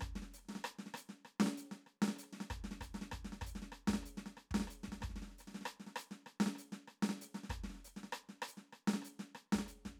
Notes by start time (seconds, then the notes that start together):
0.01 kick, cross-stick
0.16 snare
0.22 snare
0.31 snare, hi-hat pedal
0.39 cross-stick
0.45 snare
0.49 snare
0.55 snare
0.64 cross-stick
0.79 snare
0.86 snare
0.94 cross-stick, hi-hat pedal
1.09 snare
1.25 cross-stick
1.40 snare
1.46 snare
1.55 cross-stick, hi-hat pedal
1.62 snare
1.71 snare
1.87 cross-stick
2.02 snare
2.08 snare
2.17 cross-stick, hi-hat pedal
2.23 cross-stick
2.30 snare
2.33 snare
2.40 snare
2.50 kick, cross-stick
2.64 snare
2.71 snare
2.78 kick, cross-stick, snare
2.83 hi-hat pedal
2.95 snare
3.02 snare
3.12 kick, cross-stick
3.25 snare
3.32 snare
3.42 kick, cross-stick
3.47 hi-hat pedal
3.55 snare
3.62 snare
3.72 cross-stick
3.88 kick, snare
3.94 snare
4.03 cross-stick, hi-hat pedal
4.18 snare
4.26 snare
4.37 cross-stick
4.51 kick, snare
4.57 kick, snare
4.68 cross-stick, hi-hat pedal
4.73 cross-stick
4.84 snare
4.88 kick
4.92 snare
5.01 kick, cross-stick, snare
5.10 snare
5.16 snare
5.22 snare
5.28 snare
5.32 snare
5.39 cross-stick, hi-hat pedal
5.47 snare
5.55 snare
5.61 snare
5.66 cross-stick
5.80 snare
5.87 snare
5.96 cross-stick, hi-hat pedal
6.11 snare
6.26 cross-stick
6.40 snare
6.46 snare
6.55 cross-stick, hi-hat pedal
6.62 cross-stick
6.72 snare
6.88 cross-stick
7.03 snare
7.09 snare
7.17 snare
7.21 snare, hi-hat pedal
7.35 snare
7.44 snare
7.50 kick, cross-stick
7.64 snare
7.70 snare
7.75 snare
7.80 snare
7.85 cross-stick, hi-hat pedal
7.97 snare
8.04 snare
8.13 cross-stick
8.29 snare
8.42 cross-stick
8.48 hi-hat pedal
8.57 snare
8.73 cross-stick
8.88 snare
8.94 snare
9.02 cross-stick, hi-hat pedal
9.08 cross-stick
9.20 snare
9.35 cross-stick
9.53 kick, snare
9.59 snare
9.67 cross-stick, hi-hat pedal
9.85 kick, snare